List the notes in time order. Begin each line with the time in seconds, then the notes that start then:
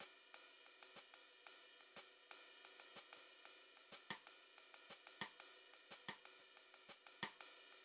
0.01 hi-hat pedal, ride
0.35 ride
0.67 ride
0.83 ride
0.97 hi-hat pedal
1.15 ride
1.47 ride
1.81 ride
1.97 hi-hat pedal, ride
2.32 ride
2.66 ride
2.81 ride
2.97 hi-hat pedal
3.14 hi-hat pedal, ride
3.46 ride
3.78 ride
3.93 hi-hat pedal, ride
4.11 cross-stick
4.28 ride
4.59 ride
4.75 ride
4.91 hi-hat pedal
5.08 ride
5.22 cross-stick
5.41 ride
5.74 ride
5.91 hi-hat pedal, ride
6.09 cross-stick
6.26 ride
6.40 hi-hat pedal
6.58 ride
6.75 ride
6.89 hi-hat pedal
7.07 ride
7.24 cross-stick
7.41 ride
7.73 ride